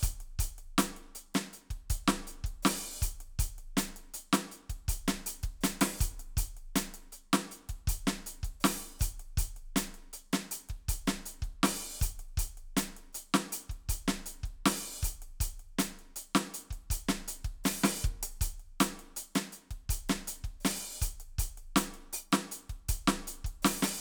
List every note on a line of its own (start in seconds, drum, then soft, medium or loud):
0.01 closed hi-hat loud
0.01 kick medium
0.01 hi-hat pedal medium
0.20 closed hi-hat soft
0.39 closed hi-hat loud
0.39 kick medium
0.58 closed hi-hat soft
0.78 closed hi-hat loud
0.78 snare loud
0.96 closed hi-hat soft
1.15 closed hi-hat medium
1.34 snare loud
1.34 closed hi-hat medium
1.53 closed hi-hat medium
1.70 kick soft
1.70 closed hi-hat soft
1.90 closed hi-hat loud
1.90 kick medium
2.08 snare loud
2.27 closed hi-hat medium
2.44 kick medium
2.44 closed hi-hat medium
2.62 open hi-hat loud
2.62 snare loud
2.62 hi-hat pedal medium
3.01 closed hi-hat loud
3.01 kick medium
3.01 hi-hat pedal medium
3.20 closed hi-hat soft
3.39 closed hi-hat loud
3.39 kick medium
3.58 closed hi-hat soft
3.77 open hi-hat loud
3.77 snare loud
3.96 closed hi-hat medium
4.14 closed hi-hat loud
4.33 snare loud
4.33 closed hi-hat medium
4.51 closed hi-hat medium
4.70 kick soft
4.70 closed hi-hat medium
4.88 closed hi-hat loud
4.88 kick medium
5.08 snare loud
5.08 closed hi-hat medium
5.26 closed hi-hat loud
5.43 kick medium
5.43 closed hi-hat medium
5.61 closed hi-hat loud
5.61 snare loud
5.61 hi-hat pedal soft
5.81 snare loud
5.81 open hi-hat loud
5.99 closed hi-hat loud
5.99 kick medium
5.99 hi-hat pedal soft
6.19 closed hi-hat medium
6.37 closed hi-hat loud
6.37 kick medium
6.57 closed hi-hat soft
6.76 closed hi-hat loud
6.76 snare loud
6.94 closed hi-hat medium
7.12 closed hi-hat medium
7.33 snare loud
7.33 closed hi-hat medium
7.51 closed hi-hat medium
7.69 kick soft
7.69 closed hi-hat medium
7.87 closed hi-hat loud
7.87 kick medium
8.07 snare loud
8.26 closed hi-hat medium
8.43 kick medium
8.43 closed hi-hat medium
8.60 snare loud
8.60 hi-hat pedal soft
8.65 open hi-hat loud
8.99 closed hi-hat loud
8.99 kick medium
8.99 hi-hat pedal medium
9.20 closed hi-hat soft
9.37 closed hi-hat loud
9.37 kick medium
9.56 closed hi-hat soft
9.76 closed hi-hat loud
9.76 snare loud
9.94 closed hi-hat soft
10.13 closed hi-hat medium
10.33 snare loud
10.33 closed hi-hat medium
10.51 closed hi-hat loud
10.69 kick soft
10.69 closed hi-hat soft
10.88 closed hi-hat loud
10.88 kick medium
11.07 snare loud
11.07 closed hi-hat medium
11.26 closed hi-hat medium
11.42 kick medium
11.42 closed hi-hat soft
11.63 open hi-hat loud
11.63 snare loud
11.99 closed hi-hat loud
11.99 kick medium
11.99 hi-hat pedal medium
12.19 closed hi-hat soft
12.37 closed hi-hat loud
12.37 kick medium
12.57 closed hi-hat soft
12.77 closed hi-hat loud
12.77 snare loud
12.97 closed hi-hat soft
13.13 closed hi-hat loud
13.13 hi-hat pedal soft
13.34 snare loud
13.34 closed hi-hat soft
13.52 closed hi-hat loud
13.69 kick soft
13.69 closed hi-hat soft
13.89 closed hi-hat loud
13.89 kick medium
14.08 snare loud
14.26 closed hi-hat medium
14.43 kick medium
14.43 closed hi-hat soft
14.66 open hi-hat loud
14.66 snare loud
15.02 closed hi-hat loud
15.02 kick medium
15.02 hi-hat pedal medium
15.22 closed hi-hat soft
15.40 closed hi-hat loud
15.40 kick medium
15.59 closed hi-hat soft
15.79 closed hi-hat loud
15.79 snare loud
15.99 closed hi-hat soft
16.16 closed hi-hat loud
16.35 snare loud
16.35 closed hi-hat medium
16.54 closed hi-hat loud
16.70 kick soft
16.70 closed hi-hat soft
16.90 closed hi-hat loud
16.90 kick medium
17.09 snare loud
17.09 closed hi-hat medium
17.28 closed hi-hat loud
17.44 kick medium
17.44 closed hi-hat soft
17.64 open hi-hat loud
17.64 snare loud
17.64 hi-hat pedal medium
17.84 open hi-hat loud
17.84 snare loud
18.03 kick medium
18.03 hi-hat pedal medium
18.23 closed hi-hat loud
18.41 closed hi-hat loud
18.41 kick medium
18.60 closed hi-hat soft
18.80 closed hi-hat loud
18.80 snare loud
18.99 closed hi-hat soft
19.15 closed hi-hat loud
19.15 hi-hat pedal soft
19.35 snare loud
19.35 closed hi-hat medium
19.52 closed hi-hat medium
19.71 kick soft
19.71 closed hi-hat soft
19.89 closed hi-hat loud
19.89 kick medium
20.09 snare loud
20.09 closed hi-hat medium
20.27 closed hi-hat loud
20.44 kick medium
20.44 closed hi-hat soft
20.60 hi-hat pedal soft
20.65 open hi-hat loud
20.65 snare loud
21.01 closed hi-hat loud
21.01 kick medium
21.01 hi-hat pedal medium
21.20 closed hi-hat medium
21.38 closed hi-hat loud
21.38 kick medium
21.57 closed hi-hat soft
21.76 closed hi-hat loud
21.76 snare loud
21.94 closed hi-hat soft
22.12 open hi-hat loud
22.12 hi-hat pedal soft
22.32 snare loud
22.32 closed hi-hat medium
22.51 closed hi-hat loud
22.69 kick soft
22.69 closed hi-hat soft
22.89 closed hi-hat loud
22.89 kick medium
23.08 snare loud
23.27 closed hi-hat loud
23.44 kick medium
23.44 closed hi-hat medium
23.62 open hi-hat loud
23.62 snare loud
23.62 hi-hat pedal medium
23.82 open hi-hat loud
23.82 snare loud